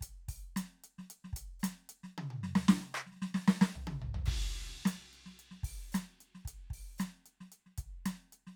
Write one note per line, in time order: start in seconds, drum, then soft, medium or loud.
0.01 kick soft
0.01 closed hi-hat medium
0.28 kick soft
0.28 open hi-hat medium
0.56 snare medium
0.56 closed hi-hat loud
0.56 hi-hat pedal soft
0.84 closed hi-hat medium
0.99 snare soft
1.10 closed hi-hat medium
1.24 snare soft
1.33 kick soft
1.33 closed hi-hat loud
1.60 snare medium
1.60 hi-hat pedal soft
1.64 closed hi-hat loud
1.89 closed hi-hat medium
2.04 snare soft
2.18 high tom loud
2.31 high tom medium
2.44 snare medium
2.56 snare loud
2.69 snare loud
2.81 snare soft
2.95 percussion loud
3.06 snare soft
3.12 snare soft
3.16 snare soft
3.22 snare medium
3.35 snare medium
3.48 snare loud
3.61 snare loud
3.76 floor tom medium
3.87 high tom loud
4.02 floor tom medium
4.15 floor tom medium
4.26 kick medium
4.26 ride loud
4.86 snare loud
4.86 closed hi-hat loud
5.13 closed hi-hat soft
5.26 snare soft
5.39 closed hi-hat medium
5.51 snare soft
5.64 kick soft
5.64 open hi-hat medium
5.92 snare medium
5.92 closed hi-hat loud
5.92 hi-hat pedal medium
6.21 closed hi-hat medium
6.35 snare soft
6.45 kick soft
6.45 closed hi-hat medium
6.70 kick soft
6.70 open hi-hat medium
6.98 snare medium
6.98 closed hi-hat medium
6.98 hi-hat pedal medium
7.26 closed hi-hat medium
7.41 snare soft
7.52 closed hi-hat medium
7.66 snare soft
7.78 kick soft
7.78 closed hi-hat medium
8.06 snare medium
8.06 closed hi-hat medium
8.33 closed hi-hat medium
8.47 snare soft